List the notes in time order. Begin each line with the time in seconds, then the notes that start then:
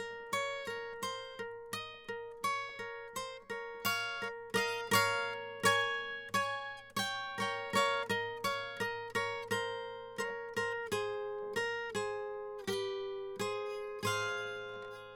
0.01 A#4
0.34 C#5
0.69 A#4
1.04 C5
1.41 A#4
1.75 D#5
2.10 A#4
2.45 C#5
2.81 A#4
3.18 C5
3.51 A#4 C#5
3.86 C#5 F5
4.23 A#4 C#5
4.55 A#4 D#5 F5
4.93 A#4 C#5 F5
5.65 A#4 C#5 G#5
6.35 C#5 G#5
6.98 C#5 G5
7.39 A#4 C#5 G5
7.75 A#4 C#5 F5
8.11 A#4 D#5
8.46 C#5 F5
8.82 A#4 D#5
9.16 A#4 C#5
9.52 A#4 C5
10.20 A#4 C#5
10.58 A#4 C5
10.93 G#4 C5
11.58 A#4 C5
11.96 G#4 C5
12.69 G4 B4
13.41 G#4 C5
14.04 G#4 C5 F5